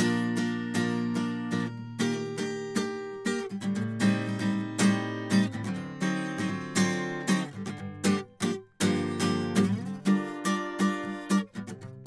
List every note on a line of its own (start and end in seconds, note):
0.00 0.40 F3
0.00 0.39 A#3
0.00 0.39 D4
0.00 0.19 E4
0.00 0.37 A#4
0.38 0.76 F3
0.38 0.76 A#3
0.38 0.76 D4
0.38 0.52 E4
0.38 0.77 A#4
0.75 1.75 A#2
0.75 1.18 F3
0.75 1.18 A#3
0.75 1.17 D4
0.75 0.90 F4
0.75 1.16 A#4
1.16 1.53 F3
1.16 1.52 A#3
1.16 1.53 D4
1.16 1.28 F4
1.16 1.54 A#4
1.53 1.65 F3
1.53 1.73 A#3
1.53 1.76 D4
1.53 1.68 E4
1.53 2.02 A#4
1.67 1.98 D#3
1.76 2.00 A#2
2.00 2.17 A#2
2.00 2.41 D#3
2.00 2.15 A#3
2.00 2.13 C#4
2.00 2.39 G4
2.00 2.38 A#4
2.16 2.31 A3
2.39 2.75 D#3
2.39 2.76 A3
2.39 2.57 D4
2.39 2.77 G4
2.39 2.77 A#4
2.75 3.21 D#3
2.75 2.99 A3
2.75 2.88 D4
2.75 3.27 G4
2.75 3.26 A#4
3.26 3.44 A#3
3.26 3.50 G4
3.26 3.50 A#4
3.64 3.74 A2
3.64 3.76 D3
3.64 3.77 G3
3.76 4.01 A2
3.76 3.96 C#3
3.76 4.01 G3
4.01 4.80 A2
4.01 4.15 C#3
4.01 4.29 G3
4.01 4.28 C4
4.01 4.29 D#4
4.29 4.43 G3
4.29 4.42 C4
4.29 4.42 D#4
4.42 4.54 D3
4.42 4.58 G3
4.42 4.54 C4
4.42 4.82 D#4
4.54 4.79 C4
4.80 5.29 A2
4.80 4.91 D3
4.80 5.32 G3
4.80 5.33 C4
4.80 5.33 D#4
5.31 5.50 A2
5.31 5.48 C#3
5.31 5.49 G3
5.31 5.54 C4
5.31 5.51 D#4
5.54 5.66 A2
5.54 5.67 C4
5.67 6.02 D3
5.67 5.84 F#3
5.67 5.75 C4
5.75 6.03 C4
6.02 6.42 D3
6.02 6.42 F#3
6.02 6.42 C4
6.02 6.39 D#4
6.41 6.50 D3
6.41 6.51 F#3
6.41 6.78 C4
6.41 6.51 D#4
6.50 6.77 D3
6.50 6.76 F#3
6.50 6.78 F4
6.77 7.28 D3
6.77 7.29 F#3
6.77 7.29 C4
6.77 7.25 F4
7.29 7.54 D3
7.29 7.48 F#3
7.29 7.52 C4
7.29 7.50 D#4
7.69 7.78 G#2
7.69 8.05 D3
7.69 7.80 F3
7.80 8.04 G2
8.05 8.21 G2
8.05 8.28 D3
8.05 8.23 F3
8.05 8.26 D4
8.05 8.26 G4
8.43 8.57 D3
8.43 8.58 F3
8.43 8.60 A#3
8.43 8.61 D4
8.43 8.60 G4
8.82 9.22 G2
8.82 9.23 D3
8.82 9.22 F3
8.82 9.20 A#3
8.82 9.21 D4
8.82 9.21 G4
9.21 9.80 G2
9.21 9.63 D3
9.21 9.56 F3
9.21 9.58 A#3
9.21 9.58 D4
9.21 9.57 G4
9.58 9.71 F#3
9.58 9.68 A#3
9.58 9.69 D4
9.58 9.70 G4
9.80 10.06 D3
9.80 9.93 G3
9.80 10.05 C4
10.06 10.39 D3
10.06 10.17 G3
10.06 10.47 D4
10.06 10.47 F4
10.06 10.46 A#4
10.06 10.44 D5
10.46 10.60 G3
10.46 10.80 D4
10.46 10.81 F4
10.46 10.81 A#4
10.46 10.81 D5
10.80 11.03 G3
10.80 11.31 D4
10.80 11.31 F4
10.80 11.32 A#4
10.80 11.32 D5
11.05 11.21 G3
11.31 11.45 G3
11.31 11.45 D4
11.31 11.46 F4
11.31 11.47 A#4
11.31 11.44 D5
11.70 11.82 C3
11.70 11.79 F3
11.84 12.07 C3